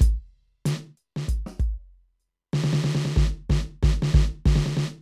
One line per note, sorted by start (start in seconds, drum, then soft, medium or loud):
0.01 closed hi-hat loud
0.01 kick loud
0.66 closed hi-hat loud
0.66 snare loud
0.98 closed hi-hat soft
1.17 snare medium
1.29 closed hi-hat medium
1.29 kick medium
1.47 snare medium
1.60 closed hi-hat soft
1.60 kick medium
2.20 hi-hat pedal soft
2.53 snare loud
2.53 hi-hat pedal soft
2.64 snare loud
2.73 snare loud
2.82 snare loud
2.82 hi-hat pedal soft
2.95 snare loud
3.05 snare loud
3.17 kick medium
3.17 snare loud
3.50 kick medium
3.50 snare loud
3.50 hi-hat pedal soft
3.83 kick medium
3.83 snare loud
3.83 hi-hat pedal medium
4.03 snare loud
4.14 kick loud
4.14 snare loud
4.14 hi-hat pedal soft
4.46 kick medium
4.46 snare loud
4.46 hi-hat pedal medium
4.77 snare loud